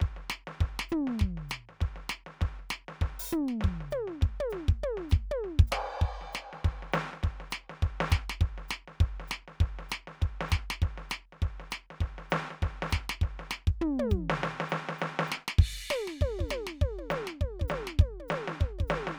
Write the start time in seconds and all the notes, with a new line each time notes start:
0.01 kick, snare
0.17 snare
0.30 snare, hi-hat pedal
0.48 snare
0.61 kick, snare
0.80 snare
0.90 floor tom, hi-hat pedal
1.08 snare
1.20 kick, snare
1.38 snare
1.50 snare, hi-hat pedal
1.70 snare
1.81 kick, snare
1.97 snare
2.10 snare, hi-hat pedal
2.27 snare
2.42 kick, snare
2.60 snare
2.70 snare, hi-hat pedal
2.89 snare
3.02 kick, snare
3.20 open hi-hat
3.31 floor tom, hi-hat pedal
3.49 snare
3.62 kick, snare
3.81 snare
3.92 hi-hat pedal, high tom
4.08 snare
4.22 kick, snare
4.41 high tom
4.50 snare, hi-hat pedal
4.69 kick
4.84 high tom
4.98 snare
5.10 kick, snare, hi-hat pedal
5.32 high tom
5.45 snare
5.60 kick
5.68 hi-hat pedal
5.72 snare, crash
6.02 kick
6.22 snare
6.33 snare, hi-hat pedal
6.54 snare
6.65 kick, snare
6.83 snare
6.93 snare, hi-hat pedal
7.14 snare
7.24 kick, snare
7.41 snare
7.51 snare, hi-hat pedal
7.70 snare
7.83 kick, snare
8.01 snare
8.10 kick, snare, hi-hat pedal
8.30 snare
8.42 kick, snare
8.58 snare
8.69 snare, hi-hat pedal
8.88 snare
9.01 kick, snare
9.20 snare
9.28 snare, hi-hat pedal
9.48 snare
9.61 kick, snare
9.79 snare
9.90 snare, hi-hat pedal
10.08 snare
10.22 kick, snare
10.42 snare
10.49 kick, snare, hi-hat pedal
10.71 snare
10.83 kick, snare
10.98 snare
11.10 snare, hi-hat pedal
11.33 snare
11.43 kick, snare
11.61 snare
11.71 snare, hi-hat pedal
11.91 snare
12.01 kick, snare
12.19 snare
12.31 snare, hi-hat pedal
12.38 kick
12.51 snare
12.63 kick, snare
12.83 snare
12.91 kick, snare, hi-hat pedal
13.10 snare
13.22 kick, snare
13.40 snare
13.51 snare, hi-hat pedal
13.68 kick
13.81 floor tom
14.00 high tom
14.11 kick, hi-hat pedal
14.30 snare
14.44 snare
14.61 snare
14.70 snare, hi-hat pedal
14.89 snare
14.99 snare, hi-hat pedal
15.20 snare
15.27 kick, hi-hat pedal
15.32 snare
15.49 snare
15.59 kick, crash
15.90 snare, hi-hat pedal, high tom
16.08 snare
16.22 kick, high tom
16.39 kick, high tom
16.50 snare, hi-hat pedal, high tom
16.68 snare
16.82 kick, high tom
16.99 high tom
17.11 snare, hi-hat pedal, high tom
17.28 snare
17.41 kick, high tom
17.60 kick, high tom
17.68 snare, hi-hat pedal, high tom
17.88 snare
18.00 kick, high tom
18.20 high tom
18.29 snare, hi-hat pedal, high tom
18.48 snare
18.61 kick, high tom
18.79 kick, high tom
18.88 snare, hi-hat pedal, high tom
19.08 snare